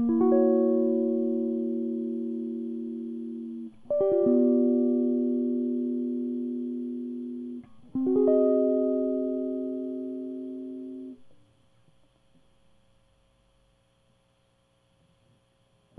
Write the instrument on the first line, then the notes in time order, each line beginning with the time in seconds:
electric guitar
0.00 A#3
0.09 E4
0.21 F#4
0.32 C#5
3.91 D5
4.01 G4
4.12 F4
4.27 B3
7.96 C4
8.07 F#4
8.16 G#4
8.28 D#5